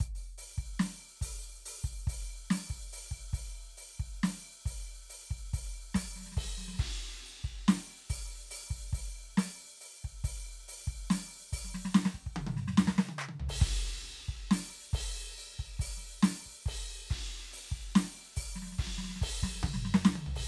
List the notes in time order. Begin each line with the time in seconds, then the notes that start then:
0.00 open hi-hat, kick, hi-hat pedal
0.15 open hi-hat
0.38 open hi-hat
0.58 kick, open hi-hat
0.80 open hi-hat, snare
1.00 open hi-hat
1.22 open hi-hat, kick
1.44 open hi-hat
1.66 open hi-hat
1.84 kick, open hi-hat
2.07 open hi-hat, kick
2.28 open hi-hat
2.51 open hi-hat, snare
2.70 kick, open hi-hat
2.93 open hi-hat
3.11 open hi-hat, kick
3.33 open hi-hat, kick
3.56 open hi-hat
3.78 open hi-hat
4.00 kick, open hi-hat
4.24 open hi-hat, snare
4.44 open hi-hat
4.66 open hi-hat, kick
4.87 open hi-hat
5.10 open hi-hat
5.31 kick, open hi-hat
5.54 open hi-hat, kick
5.73 open hi-hat
5.95 open hi-hat, kick, snare
6.16 snare
6.19 snare
6.21 snare
6.26 snare
6.32 snare
6.37 kick, crash
6.44 snare
6.58 snare
6.61 snare
6.68 snare
6.74 snare
6.78 kick, snare, ride
7.26 open hi-hat
7.44 kick, open hi-hat
7.68 open hi-hat, snare
7.89 open hi-hat
8.10 open hi-hat, kick
8.29 open hi-hat
8.51 open hi-hat
8.71 kick, open hi-hat
8.93 open hi-hat, kick, snare
9.16 open hi-hat
9.38 open hi-hat, snare
9.43 snare
9.58 open hi-hat
9.81 open hi-hat
10.02 kick, open hi-hat
10.24 open hi-hat, kick
10.47 open hi-hat
10.68 open hi-hat
10.88 kick, open hi-hat
11.11 open hi-hat, snare
11.31 open hi-hat
11.38 snare
11.53 open hi-hat, kick
11.65 snare
11.74 snare
11.85 snare
11.95 snare
12.06 snare
12.14 kick
12.27 kick
12.36 high tom
12.47 high tom
12.57 snare
12.68 snare
12.78 snare
12.88 snare
12.98 snare
13.09 closed hi-hat, high tom
13.14 crash
13.19 percussion
13.29 high tom
13.40 floor tom
13.49 kick, crash
13.61 kick, ride
14.09 open hi-hat
14.29 kick, open hi-hat
14.51 open hi-hat, snare
14.74 open hi-hat
14.93 kick, crash
15.15 open hi-hat
15.38 open hi-hat
15.59 kick, open hi-hat
15.80 open hi-hat, kick
15.97 snare
16.23 open hi-hat, snare
16.46 kick, open hi-hat
16.66 kick, crash
16.88 open hi-hat
17.10 kick, ride
17.53 open hi-hat
17.72 kick, open hi-hat
17.96 open hi-hat, snare
18.15 open hi-hat
18.19 snare
18.26 snare
18.37 open hi-hat, kick
18.56 snare
18.62 snare
18.67 snare
18.79 kick, ride
18.87 snare
18.98 snare
19.04 snare
19.10 snare
19.16 snare
19.22 kick, crash
19.43 kick, snare
19.56 snare
19.63 kick, high tom
19.74 snare
19.85 snare
19.94 snare
20.04 kick, snare
20.16 high tom
20.27 floor tom
20.36 kick, crash